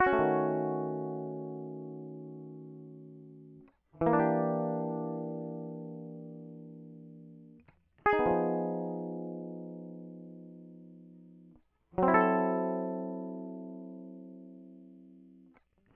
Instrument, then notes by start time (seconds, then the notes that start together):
electric guitar
0.00 F#4
0.06 C#4
0.13 A3
0.20 D#3
4.02 E3
4.07 A#3
4.13 D4
4.19 G4
8.06 G#4
8.11 D#4 G#4
8.19 B3
8.27 F3
8.33 B2
8.57 B3
11.99 F#3
12.03 C4
12.08 E4
12.14 A4